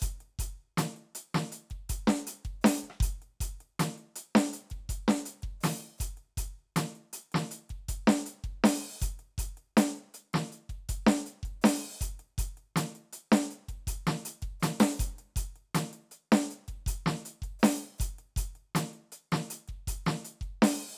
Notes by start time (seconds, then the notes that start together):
0.01 closed hi-hat, kick, hi-hat pedal
0.20 closed hi-hat
0.39 closed hi-hat, kick
0.60 closed hi-hat
0.77 closed hi-hat, snare
0.96 closed hi-hat
1.15 closed hi-hat
1.34 snare, closed hi-hat
1.52 closed hi-hat
1.70 kick, closed hi-hat
1.89 closed hi-hat, kick
2.07 snare
2.27 closed hi-hat
2.45 kick, closed hi-hat
2.61 snare, hi-hat pedal
2.66 open hi-hat
2.83 kick, closed hi-hat
2.90 cross-stick
3.00 closed hi-hat, kick
3.22 closed hi-hat
3.40 closed hi-hat, kick
3.60 closed hi-hat
3.79 closed hi-hat, snare
3.98 closed hi-hat
4.16 closed hi-hat
4.35 snare, closed hi-hat
4.53 closed hi-hat
4.70 kick, closed hi-hat
4.89 closed hi-hat, kick
5.08 snare, closed hi-hat
5.25 closed hi-hat
5.42 kick, closed hi-hat
5.60 open hi-hat, snare, hi-hat pedal
5.98 closed hi-hat, kick, hi-hat pedal
6.17 closed hi-hat
6.37 closed hi-hat, kick
6.59 closed hi-hat
6.76 closed hi-hat, snare
6.95 closed hi-hat
7.13 closed hi-hat
7.32 snare, closed hi-hat
7.40 snare
7.51 closed hi-hat
7.69 kick, closed hi-hat
7.88 closed hi-hat, kick
8.07 snare
8.26 closed hi-hat
8.44 kick, closed hi-hat
8.64 open hi-hat, snare
9.00 closed hi-hat, kick, hi-hat pedal
9.19 closed hi-hat
9.38 closed hi-hat, kick
9.57 closed hi-hat
9.77 closed hi-hat, snare
9.95 closed hi-hat
10.14 closed hi-hat
10.33 snare, closed hi-hat
10.52 closed hi-hat
10.69 kick, closed hi-hat
10.89 closed hi-hat, kick
11.07 snare
11.26 closed hi-hat
11.43 kick, closed hi-hat
11.61 open hi-hat, snare, hi-hat pedal
12.00 closed hi-hat, kick, hi-hat pedal
12.19 closed hi-hat
12.38 closed hi-hat, kick
12.57 closed hi-hat
12.76 open hi-hat, snare
12.95 closed hi-hat
13.13 closed hi-hat
13.32 snare, closed hi-hat
13.50 closed hi-hat
13.68 kick, closed hi-hat
13.87 closed hi-hat, kick
14.07 snare, closed hi-hat
14.25 closed hi-hat
14.42 kick, closed hi-hat
14.60 closed hi-hat, snare, hi-hat pedal
14.80 snare, open hi-hat
14.98 closed hi-hat, kick, hi-hat pedal
15.18 closed hi-hat
15.36 closed hi-hat, kick
15.56 closed hi-hat
15.75 closed hi-hat, snare
15.93 closed hi-hat
16.11 closed hi-hat
16.32 snare, closed hi-hat
16.50 closed hi-hat
16.68 kick, closed hi-hat
16.86 closed hi-hat, kick
17.06 snare
17.25 closed hi-hat
17.42 kick, closed hi-hat
17.59 snare, hi-hat pedal
17.63 open hi-hat
17.98 closed hi-hat, kick, hi-hat pedal
18.18 closed hi-hat
18.36 closed hi-hat, kick
18.55 closed hi-hat
18.75 closed hi-hat, snare
18.93 closed hi-hat
19.12 closed hi-hat
19.32 snare, closed hi-hat
19.50 closed hi-hat
19.68 kick, closed hi-hat
19.87 closed hi-hat, kick
20.06 snare, closed hi-hat
20.25 closed hi-hat
20.41 kick, closed hi-hat
20.62 open hi-hat, snare